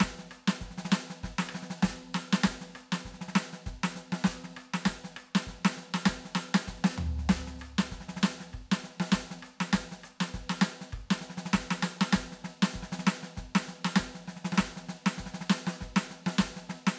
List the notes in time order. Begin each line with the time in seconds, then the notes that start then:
0.01 kick, snare
0.19 snare
0.32 cross-stick, hi-hat pedal
0.48 snare
0.61 kick, snare
0.79 snare
0.85 snare
0.93 snare, hi-hat pedal
1.11 snare
1.24 kick, snare
1.39 cross-stick, snare
1.50 cross-stick, hi-hat pedal
1.55 snare
1.63 snare
1.71 snare
1.79 snare
1.83 kick, snare
1.89 snare
2.14 snare, hi-hat pedal
2.33 snare
2.44 kick, snare
2.62 snare
2.76 cross-stick, hi-hat pedal
2.93 snare
3.05 kick, snare
3.15 snare
3.22 snare
3.29 snare
3.36 snare, hi-hat pedal
3.54 snare
3.67 kick, snare
3.84 snare
3.96 snare, hi-hat pedal
4.13 snare
4.25 kick, snare
4.45 snare
4.56 cross-stick, hi-hat pedal
4.74 snare
4.86 kick, snare
5.05 snare
5.17 cross-stick, hi-hat pedal
5.36 snare
5.47 kick, snare
5.66 snare
5.78 snare, hi-hat pedal
5.95 snare
6.06 kick, snare
6.26 snare
6.36 snare, hi-hat pedal
6.55 snare
6.68 kick, snare
6.85 snare
6.97 floor tom, hi-hat pedal
7.19 snare
7.30 kick, snare
7.48 snare
7.59 cross-stick, hi-hat pedal
7.79 snare
7.92 kick, snare
8.01 snare
8.09 snare
8.17 snare
8.21 snare, hi-hat pedal
8.41 snare
8.54 kick, cross-stick
8.72 snare
8.82 snare, hi-hat pedal
9.01 snare
9.13 kick, snare
9.31 snare
9.43 cross-stick, hi-hat pedal
9.61 snare
9.74 kick, snare
9.92 snare
10.04 cross-stick, hi-hat pedal
10.21 snare
10.34 kick, snare
10.50 snare
10.62 snare, hi-hat pedal
10.82 snare
10.93 kick, cross-stick
11.11 snare
11.22 snare, hi-hat pedal
11.30 snare
11.38 snare
11.46 snare
11.54 kick, snare
11.71 snare
11.83 snare
11.88 hi-hat pedal
12.02 snare
12.13 kick, snare
12.32 snare
12.45 snare, hi-hat pedal
12.63 snare
12.74 kick, snare
12.83 snare
12.93 snare
13.00 snare
13.07 snare, hi-hat pedal
13.23 snare
13.38 kick, snare
13.56 snare
13.67 snare, hi-hat pedal
13.85 snare
13.96 kick, snare
14.15 snare
14.28 snare, hi-hat pedal
14.37 snare
14.45 snare
14.53 snare
14.58 kick, snare
14.77 snare
14.89 snare, hi-hat pedal
15.07 snare
15.18 kick, snare
15.27 snare
15.34 snare
15.42 snare
15.50 snare, hi-hat pedal
15.68 snare
15.81 kick, snare
15.97 snare
16.11 snare, hi-hat pedal
16.27 snare
16.39 kick, snare
16.57 snare
16.70 snare, hi-hat pedal
16.88 snare